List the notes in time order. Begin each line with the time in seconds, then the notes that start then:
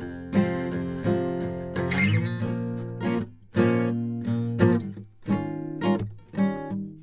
0.00 F2 C3
0.34 C3 F3 C4
0.39 F4
0.66 F4
0.73 F2 C3
1.05 C3 F3
1.42 F2 C3
1.54 F4
1.77 G2 C3 F3
2.15 F3
2.39 A#2
2.43 F3 A#3 C#4
2.48 F4 A#4
3.02 F4 A#4
3.06 F3 A#3 C#4
3.56 A#2 F3 A#3
3.60 C#4 F4
4.26 A#2 F3
4.60 F3 A#3 C#4 F4
4.65 A#4
5.27 D#3 G#3
5.32 C#4 F4 A#4
5.82 C#4 F4 A#4
5.87 G#3
6.35 D#3 G3
6.40 C#4 F4
6.71 G3